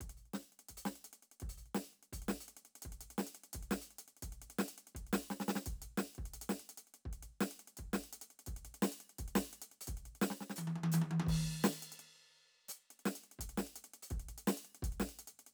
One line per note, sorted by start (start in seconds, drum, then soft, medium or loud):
0.00 kick soft
0.00 closed hi-hat soft
0.09 closed hi-hat soft
0.17 closed hi-hat soft
0.25 closed hi-hat soft
0.33 snare medium
0.43 closed hi-hat soft
0.52 closed hi-hat soft
0.59 closed hi-hat soft
0.68 kick soft
0.68 closed hi-hat medium
0.77 closed hi-hat soft
0.85 snare medium
0.95 closed hi-hat soft
1.04 closed hi-hat medium
1.13 closed hi-hat soft
1.22 closed hi-hat soft
1.31 closed hi-hat soft
1.40 kick soft
1.40 closed hi-hat soft
1.49 closed hi-hat soft
1.57 closed hi-hat soft
1.66 closed hi-hat soft
1.74 snare medium
1.83 closed hi-hat soft
1.93 closed hi-hat soft
2.02 closed hi-hat soft
2.12 closed hi-hat medium
2.12 kick soft
2.22 closed hi-hat soft
2.28 snare medium
2.40 closed hi-hat soft
2.48 closed hi-hat soft
2.57 closed hi-hat soft
2.65 closed hi-hat soft
2.75 closed hi-hat soft
2.82 kick soft
2.82 closed hi-hat medium
2.92 closed hi-hat soft
3.01 closed hi-hat medium
3.10 closed hi-hat soft
3.18 snare medium
3.27 closed hi-hat medium
3.35 closed hi-hat soft
3.43 closed hi-hat soft
3.53 kick soft
3.53 closed hi-hat medium
3.62 closed hi-hat soft
3.71 snare medium
3.81 closed hi-hat soft
3.90 closed hi-hat soft
3.98 closed hi-hat medium
4.08 closed hi-hat soft
4.16 closed hi-hat soft
4.22 kick soft
4.22 closed hi-hat medium
4.32 closed hi-hat soft
4.42 closed hi-hat soft
4.50 closed hi-hat soft
4.58 snare medium
4.68 closed hi-hat medium
4.78 closed hi-hat soft
4.87 closed hi-hat soft
4.95 kick soft
4.95 closed hi-hat soft
5.06 closed hi-hat soft
5.13 snare medium
5.23 closed hi-hat soft
5.30 snare medium
5.40 snare medium
5.48 snare medium
5.55 snare medium
5.66 kick soft
5.66 closed hi-hat medium
5.82 closed hi-hat medium
5.97 snare medium
6.15 kick soft
6.15 closed hi-hat soft
6.25 closed hi-hat soft
6.33 closed hi-hat medium
6.41 closed hi-hat medium
6.49 snare medium
6.59 closed hi-hat soft
6.69 closed hi-hat medium
6.77 closed hi-hat medium
6.87 closed hi-hat soft
6.94 closed hi-hat soft
7.05 kick soft
7.13 closed hi-hat soft
7.22 closed hi-hat soft
7.40 snare medium
7.51 closed hi-hat soft
7.59 closed hi-hat soft
7.67 closed hi-hat soft
7.77 kick soft
7.77 closed hi-hat medium
7.93 snare medium
8.04 closed hi-hat soft
8.12 closed hi-hat medium
8.21 closed hi-hat medium
8.30 closed hi-hat soft
8.39 closed hi-hat soft
8.46 kick soft
8.46 closed hi-hat medium
8.56 closed hi-hat soft
8.65 closed hi-hat soft
8.74 closed hi-hat soft
8.82 snare loud
8.92 closed hi-hat medium
9.00 closed hi-hat soft
9.09 closed hi-hat soft
9.18 kick soft
9.18 closed hi-hat medium
9.28 closed hi-hat soft
9.35 snare loud
9.44 closed hi-hat soft
9.53 closed hi-hat soft
9.62 closed hi-hat medium
9.71 closed hi-hat soft
9.81 closed hi-hat medium
9.87 kick soft
9.87 closed hi-hat medium
9.97 closed hi-hat soft
10.05 closed hi-hat soft
10.15 closed hi-hat soft
10.21 snare medium
10.30 snare medium
10.40 snare soft
10.50 snare soft
10.56 hi-hat pedal medium
10.56 high tom medium
10.67 high tom medium
10.75 high tom medium
10.83 high tom medium
10.92 hi-hat pedal medium
10.92 high tom medium
11.01 high tom medium
11.11 high tom medium
11.20 high tom medium
11.26 kick medium
11.26 crash medium
11.64 snare loud
11.73 closed hi-hat soft
11.82 closed hi-hat medium
11.92 closed hi-hat medium
11.99 closed hi-hat soft
12.68 hi-hat pedal medium
12.90 closed hi-hat soft
12.99 closed hi-hat soft
13.05 snare medium
13.15 closed hi-hat medium
13.23 closed hi-hat soft
13.31 closed hi-hat soft
13.39 kick soft
13.39 closed hi-hat medium
13.49 closed hi-hat soft
13.57 snare medium
13.66 closed hi-hat soft
13.76 closed hi-hat medium
13.84 closed hi-hat soft
13.93 closed hi-hat soft
14.02 closed hi-hat soft
14.10 kick medium
14.10 closed hi-hat soft
14.19 closed hi-hat soft
14.28 closed hi-hat soft
14.38 closed hi-hat medium
14.47 snare loud
14.57 closed hi-hat medium
14.65 closed hi-hat soft
14.75 closed hi-hat soft
14.82 kick medium
14.82 closed hi-hat medium
14.92 closed hi-hat soft
15.00 snare medium
15.09 closed hi-hat soft
15.19 closed hi-hat medium
15.27 closed hi-hat medium
15.39 closed hi-hat soft
15.46 closed hi-hat soft